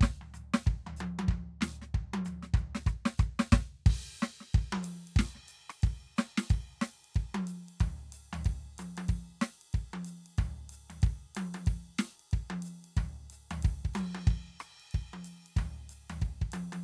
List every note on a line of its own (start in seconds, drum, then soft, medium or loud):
0.01 kick loud
0.01 snare loud
0.21 floor tom soft
0.34 floor tom soft
0.34 hi-hat pedal medium
0.54 snare loud
0.67 kick loud
0.67 floor tom soft
0.87 floor tom medium
0.97 hi-hat pedal medium
1.01 high tom loud
1.19 high tom loud
1.28 kick medium
1.28 floor tom medium
1.61 snare medium
1.61 floor tom medium
1.61 hi-hat pedal medium
1.82 snare soft
1.94 kick medium
1.94 floor tom soft
2.14 high tom loud
2.25 floor tom medium
2.25 hi-hat pedal medium
2.43 snare soft
2.54 kick loud
2.54 floor tom medium
2.54 hi-hat pedal soft
2.75 snare medium
2.87 kick medium
2.87 cross-stick medium
2.87 hi-hat pedal medium
3.06 snare loud
3.18 kick loud
3.18 cross-stick medium
3.18 hi-hat pedal medium
3.39 snare loud
3.49 snare loud
3.49 hi-hat pedal soft
3.53 kick loud
3.86 kick loud
3.86 crash medium
4.19 kick soft
4.19 snare medium
4.19 hi-hat pedal medium
4.41 snare soft
4.54 kick loud
4.54 ride soft
4.73 high tom loud
4.83 hi-hat pedal medium
4.83 ride medium
5.07 ride medium
5.16 kick loud
5.16 snare medium
5.16 ride medium
5.35 snare soft
5.48 hi-hat pedal medium
5.48 ride medium
5.70 cross-stick medium
5.70 ride medium
5.83 kick loud
5.83 ride medium
6.17 snare loud
6.17 hi-hat pedal medium
6.17 ride soft
6.38 snare loud
6.50 kick loud
6.50 ride medium
6.82 snare medium
6.82 hi-hat pedal medium
6.82 ride medium
7.05 ride soft
7.15 kick medium
7.15 ride soft
7.35 high tom loud
7.47 hi-hat pedal medium
7.47 ride medium
7.69 ride soft
7.80 kick medium
7.80 floor tom medium
7.80 ride medium
8.13 hi-hat pedal medium
8.13 ride medium
8.33 floor tom medium
8.33 ride medium
8.45 kick medium
8.45 ride medium
8.79 hi-hat pedal medium
8.79 high tom medium
8.79 ride medium
8.97 high tom loud
8.97 ride medium
9.09 kick medium
9.09 ride medium
9.42 snare loud
9.42 hi-hat pedal medium
9.42 ride medium
9.62 ride soft
9.73 kick medium
9.73 ride soft
9.94 high tom medium
10.05 hi-hat pedal medium
10.05 ride medium
10.26 ride soft
10.38 kick medium
10.38 floor tom medium
10.38 ride medium
10.70 hi-hat pedal medium
10.70 ride medium
10.90 floor tom medium
10.90 ride medium
11.02 kick loud
11.02 ride medium
11.35 hi-hat pedal medium
11.35 high tom loud
11.35 ride medium
11.54 high tom medium
11.54 ride medium
11.67 kick medium
11.67 ride medium
11.99 snare medium
11.99 hi-hat pedal medium
11.99 ride medium
12.20 ride soft
12.32 kick medium
12.32 ride soft
12.50 high tom loud
12.63 hi-hat pedal medium
12.63 ride medium
12.84 ride soft
12.97 kick medium
12.97 floor tom medium
12.97 ride medium
13.30 hi-hat pedal medium
13.30 ride medium
13.51 floor tom medium
13.51 ride medium
13.63 kick loud
13.63 ride medium
13.85 kick medium
13.94 hi-hat pedal medium
13.94 high tom loud
13.94 ride medium
14.15 high tom loud
14.27 kick loud
14.27 ride soft
14.60 cross-stick medium
14.60 hi-hat pedal medium
14.60 ride medium
14.80 ride soft
14.91 kick medium
14.91 ride soft
15.14 high tom medium
15.24 hi-hat pedal medium
15.24 ride medium
15.46 ride soft
15.57 kick medium
15.57 floor tom medium
15.57 ride medium
15.90 hi-hat pedal medium
15.90 ride medium
16.10 floor tom medium
16.10 ride medium
16.22 kick medium
16.22 ride soft
16.42 kick medium
16.52 hi-hat pedal medium
16.52 high tom loud
16.52 ride medium
16.73 high tom medium
16.73 ride medium